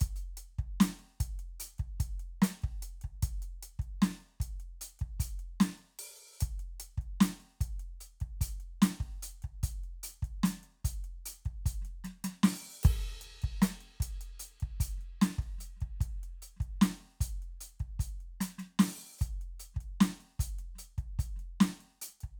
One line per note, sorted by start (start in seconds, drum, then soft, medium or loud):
0.01 kick medium
0.01 closed hi-hat loud
0.01 hi-hat pedal medium
0.17 closed hi-hat soft
0.38 closed hi-hat medium
0.60 kick medium
0.60 closed hi-hat soft
0.81 closed hi-hat loud
0.81 snare loud
1.00 closed hi-hat soft
1.21 kick medium
1.21 closed hi-hat loud
1.40 closed hi-hat soft
1.61 closed hi-hat loud
1.79 kick soft
1.79 closed hi-hat soft
2.01 kick medium
2.01 closed hi-hat loud
2.21 closed hi-hat soft
2.43 closed hi-hat loud
2.43 snare loud
2.63 kick medium
2.63 closed hi-hat soft
2.83 closed hi-hat medium
3.02 kick soft
3.02 closed hi-hat soft
3.24 kick medium
3.24 closed hi-hat loud
3.43 closed hi-hat medium
3.64 closed hi-hat loud
3.80 kick soft
3.80 closed hi-hat soft
4.03 closed hi-hat medium
4.03 snare loud
4.21 closed hi-hat soft
4.41 kick medium
4.41 closed hi-hat medium
4.61 closed hi-hat soft
4.82 closed hi-hat loud
5.00 kick soft
5.00 closed hi-hat soft
5.21 closed hi-hat loud
5.21 kick medium
5.40 closed hi-hat soft
5.61 closed hi-hat loud
5.61 snare loud
5.79 closed hi-hat soft
6.00 open hi-hat loud
6.41 kick medium
6.41 closed hi-hat loud
6.41 hi-hat pedal medium
6.60 closed hi-hat soft
6.81 closed hi-hat loud
6.99 kick soft
6.99 closed hi-hat soft
7.22 closed hi-hat loud
7.22 snare loud
7.41 closed hi-hat soft
7.62 kick medium
7.62 closed hi-hat medium
7.81 closed hi-hat soft
8.02 closed hi-hat medium
8.21 kick soft
8.21 closed hi-hat soft
8.42 closed hi-hat loud
8.42 kick medium
8.61 closed hi-hat soft
8.83 closed hi-hat loud
8.83 snare loud
9.01 kick medium
9.01 closed hi-hat soft
9.24 closed hi-hat loud
9.43 kick soft
9.43 closed hi-hat soft
9.64 closed hi-hat loud
9.64 kick medium
9.85 closed hi-hat soft
10.04 closed hi-hat loud
10.23 kick soft
10.23 closed hi-hat soft
10.44 closed hi-hat loud
10.44 snare loud
10.64 closed hi-hat soft
10.86 closed hi-hat loud
10.86 kick medium
11.05 closed hi-hat soft
11.27 closed hi-hat loud
11.46 kick soft
11.46 closed hi-hat soft
11.67 closed hi-hat loud
11.67 kick medium
11.83 snare soft
11.83 closed hi-hat soft
12.05 snare medium
12.05 closed hi-hat medium
12.25 snare medium
12.25 closed hi-hat loud
12.44 open hi-hat loud
12.44 snare loud
12.84 kick loud
12.84 hi-hat pedal medium
12.84 crash loud
13.02 closed hi-hat soft
13.22 closed hi-hat medium
13.43 kick medium
13.43 closed hi-hat soft
13.63 closed hi-hat loud
13.63 snare loud
13.82 closed hi-hat soft
14.01 kick medium
14.01 closed hi-hat loud
14.22 closed hi-hat medium
14.41 closed hi-hat loud
14.61 kick soft
14.61 closed hi-hat soft
14.81 closed hi-hat loud
14.81 kick medium
14.98 snare soft
15.02 closed hi-hat soft
15.23 closed hi-hat loud
15.23 snare loud
15.39 kick medium
15.39 closed hi-hat soft
15.59 closed hi-hat medium
15.59 snare soft
15.77 snare soft
15.82 kick soft
15.82 closed hi-hat soft
16.02 kick medium
16.02 closed hi-hat medium
16.24 closed hi-hat soft
16.43 closed hi-hat medium
16.57 kick medium
16.57 snare soft
16.63 closed hi-hat soft
16.82 closed hi-hat loud
16.82 snare loud
17.21 closed hi-hat loud
17.21 kick medium
17.43 closed hi-hat soft
17.62 closed hi-hat loud
17.81 kick soft
17.81 snare soft
17.81 closed hi-hat soft
18.00 closed hi-hat medium
18.00 kick medium
18.21 closed hi-hat soft
18.42 closed hi-hat loud
18.42 snare medium
18.59 snare medium
18.59 closed hi-hat medium
18.80 open hi-hat loud
18.80 snare loud
19.19 closed hi-hat medium
19.19 kick medium
19.19 hi-hat pedal medium
19.42 closed hi-hat soft
19.61 closed hi-hat medium
19.75 kick soft
19.75 snare soft
19.82 closed hi-hat soft
20.02 closed hi-hat loud
20.02 snare loud
20.21 closed hi-hat soft
20.40 closed hi-hat loud
20.40 kick medium
20.59 snare soft
20.59 closed hi-hat soft
20.76 closed hi-hat medium
20.76 snare soft
20.99 kick soft
20.99 closed hi-hat soft
21.20 closed hi-hat medium
21.20 kick medium
21.20 snare soft
21.37 snare soft
21.37 closed hi-hat soft
21.61 closed hi-hat medium
21.61 snare loud
21.82 closed hi-hat soft
22.03 closed hi-hat loud
22.21 kick soft
22.21 closed hi-hat medium